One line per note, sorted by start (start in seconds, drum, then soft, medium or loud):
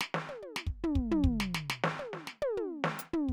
0.01 snare loud
0.14 snare medium
0.28 high tom medium
0.42 high tom medium
0.56 snare loud
0.67 kick medium
0.83 floor tom loud
0.95 kick medium
1.11 floor tom loud
1.24 kick medium
1.33 kick soft
1.40 snare loud
1.54 snare loud
1.70 snare loud
1.84 snare loud
1.99 high tom medium
2.13 snare medium
2.27 snare medium
2.42 high tom loud
2.57 mid tom medium
2.84 snare loud
2.99 closed hi-hat loud
3.13 floor tom loud
3.28 kick soft